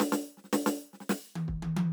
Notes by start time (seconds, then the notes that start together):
0.00 snare
0.12 snare
0.37 snare
0.44 snare
0.53 snare
0.66 snare
0.93 snare
1.00 snare
1.09 snare
1.35 high tom
1.48 kick
1.62 high tom
1.76 high tom